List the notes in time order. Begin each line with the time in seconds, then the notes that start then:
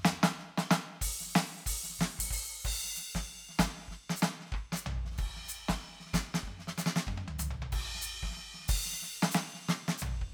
0.01 snare
0.05 snare
0.24 snare
0.39 snare
0.58 snare
0.72 snare
1.02 open hi-hat, kick
1.21 snare
1.27 snare
1.31 snare
1.36 snare
1.51 snare
1.55 snare
1.58 snare
1.61 snare
1.67 open hi-hat, kick
1.84 snare
1.90 snare
1.95 snare
2.00 kick, snare
2.19 kick, open hi-hat
2.31 open hi-hat, kick
2.65 kick, crash
2.85 snare
2.90 snare
2.94 snare, hi-hat pedal
2.97 snare
3.16 kick, snare
3.49 snare
3.54 snare
3.57 snare
3.60 kick, snare, hi-hat pedal
3.77 snare
3.81 snare
3.84 snare
3.89 kick, snare
4.10 snare
4.17 hi-hat pedal
4.23 snare
4.40 snare
4.46 snare
4.51 kick, cross-stick, snare
4.73 snare, hi-hat pedal
4.87 floor tom
4.92 kick
5.06 snare
5.11 snare
5.15 snare, ride
5.19 kick, snare
5.37 snare
5.41 snare
5.45 snare, hi-hat pedal, crash
5.69 kick, snare
5.85 snare
6.01 snare
6.06 snare
6.10 kick, snare
6.15 snare, hi-hat pedal
6.35 kick, snare
6.44 kick
6.48 high tom
6.60 snare
6.68 snare
6.78 snare, hi-hat pedal
6.87 snare
6.97 snare
7.08 kick, high tom
7.18 high tom
7.28 mid tom
7.39 hi-hat pedal, mid tom
7.51 floor tom
7.63 floor tom
7.73 kick, ride
7.95 snare
8.02 hi-hat pedal
8.23 kick, snare
8.28 snare
8.31 snare
8.38 snare
8.55 snare
8.60 snare
8.63 snare
8.66 kick, snare, hi-hat pedal, crash
8.86 snare
8.93 snare
8.98 snare
9.02 snare
9.23 snare
9.32 snare, hi-hat pedal
9.55 snare
9.60 snare
9.64 snare
9.69 snare
9.89 snare
9.99 hi-hat pedal
10.03 floor tom
10.22 kick